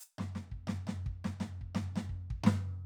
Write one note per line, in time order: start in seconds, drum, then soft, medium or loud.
0.01 hi-hat pedal medium
0.19 snare medium
0.19 floor tom medium
0.36 snare medium
0.36 floor tom soft
0.52 kick soft
0.68 snare medium
0.68 floor tom medium
0.88 snare medium
0.88 floor tom medium
1.07 kick soft
1.25 snare medium
1.25 floor tom medium
1.41 snare medium
1.41 floor tom medium
1.62 kick soft
1.76 snare medium
1.76 floor tom medium
1.96 snare medium
1.96 floor tom medium
2.10 kick soft
2.31 kick medium
2.44 snare loud
2.44 floor tom loud